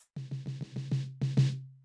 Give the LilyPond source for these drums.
\new DrumStaff \drummode { \time 4/4 \tempo 4 = 130 \tuplet 3/2 { hhp8 <tomfh sn>8 <tomfh sn>8 <tomfh sn>8 <tomfh sn>8 <tomfh sn>8 <sn tomfh>8 r8 <tomfh sn>8 } <tomfh sn>4 | }